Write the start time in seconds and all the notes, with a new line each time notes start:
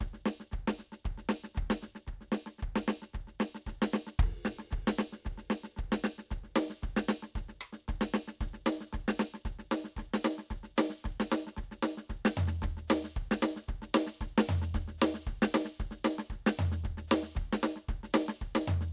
0.01 kick, snare
0.14 snare
0.26 snare, hi-hat pedal
0.40 snare
0.52 kick, snare
0.68 snare
0.78 snare, hi-hat pedal
0.93 snare
1.01 snare, hi-hat pedal
1.06 kick
1.18 snare
1.29 snare, hi-hat pedal
1.44 snare
1.54 snare, hi-hat pedal
1.58 kick
1.71 snare
1.82 snare, hi-hat pedal
1.96 snare
2.05 kick, snare, hi-hat pedal
2.21 snare
2.32 snare, hi-hat pedal
2.47 snare
2.59 snare
2.63 kick
2.76 snare
2.88 snare, hi-hat pedal
3.02 snare
3.14 kick, snare
3.28 snare
3.40 snare, hi-hat pedal
3.55 snare
3.67 kick, snare
3.82 snare
3.92 snare, hi-hat pedal
4.07 snare
4.16 kick, hi-hat pedal
4.21 ride
4.45 snare, hi-hat pedal
4.59 snare
4.70 kick, snare, hi-hat pedal
4.88 snare
4.97 snare, hi-hat pedal
5.13 snare
5.25 kick, snare
5.38 snare
5.51 snare, hi-hat pedal
5.64 snare
5.77 kick, snare
5.92 snare
6.04 snare, hi-hat pedal
6.19 snare
6.31 kick, snare
6.44 snare
6.56 snare, hi-hat pedal
6.70 snare
6.83 kick, snare
6.97 snare
7.08 snare, hi-hat pedal
7.23 snare
7.36 kick, snare
7.49 snare
7.61 cross-stick, hi-hat pedal
7.73 snare
7.88 kick, snare
8.01 snare
8.14 snare, hi-hat pedal
8.28 snare
8.41 kick, snare
8.54 snare
8.66 snare, hi-hat pedal
8.81 snare
8.93 kick, snare
9.08 snare
9.18 snare, hi-hat pedal
9.34 snare
9.46 kick, snare
9.59 snare
9.71 snare, hi-hat pedal
9.85 snare
9.97 kick, snare
10.14 snare
10.22 snare, hi-hat pedal
10.39 snare
10.51 kick, snare
10.64 snare
10.77 snare, hi-hat pedal
10.90 snare
11.05 kick, snare
11.20 snare
11.30 snare, hi-hat pedal
11.47 snare
11.57 kick, snare
11.72 snare
11.83 snare, hi-hat pedal
11.98 snare
12.10 kick, snare
12.26 snare
12.36 floor tom, hi-hat pedal
12.48 snare
12.62 kick, snare
12.77 snare
12.88 snare, hi-hat pedal
13.04 snare
13.16 kick, snare
13.32 snare
13.41 snare, hi-hat pedal
13.57 snare
13.69 kick, snare
13.82 snare
13.94 snare, hi-hat pedal
14.07 snare
14.21 kick, snare
14.38 snare
14.46 floor tom, hi-hat pedal
14.62 snare
14.75 kick, snare
14.88 snare
14.99 snare, hi-hat pedal
15.15 snare
15.27 kick, snare
15.43 snare
15.52 snare, hi-hat pedal
15.65 snare
15.80 kick, snare
15.91 snare
16.04 snare, hi-hat pedal
16.19 snare
16.30 kick, snare
16.47 snare
16.57 floor tom, hi-hat pedal
16.72 snare
16.84 kick, snare
16.98 snare
17.08 snare, hi-hat pedal
17.23 snare
17.36 kick, snare
17.53 snare
17.60 snare, hi-hat pedal
17.76 snare
17.89 kick, snare
18.04 snare
18.13 snare, hi-hat pedal
18.29 snare
18.37 hi-hat pedal
18.42 kick, snare
18.55 snare
18.67 floor tom, hi-hat pedal
18.81 snare